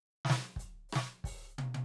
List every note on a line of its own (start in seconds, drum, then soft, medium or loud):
0.25 snare loud
0.30 snare loud
0.56 open hi-hat medium
0.56 kick medium
0.89 cross-stick medium
0.89 hi-hat pedal soft
0.96 snare loud
1.24 open hi-hat medium
1.24 kick medium
1.49 hi-hat pedal soft
1.58 high tom loud
1.74 high tom loud